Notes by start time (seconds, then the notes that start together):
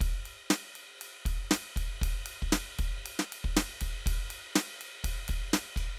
0.01 kick, ride
0.26 ride
0.51 snare, ride
0.76 ride
0.98 hi-hat pedal, ride
1.26 kick, ride
1.51 snare, hi-hat pedal, ride
1.76 kick, ride
2.02 kick, ride
2.26 ride
2.42 kick
2.53 snare, ride
2.79 kick, ride
3.06 ride
3.19 snare
3.33 ride
3.45 kick
3.57 snare, ride
3.81 kick, ride
4.06 kick, ride
4.31 ride
4.56 snare, ride
4.81 ride
5.04 kick, ride
5.28 kick, ride
5.54 snare, ride
5.77 kick, ride bell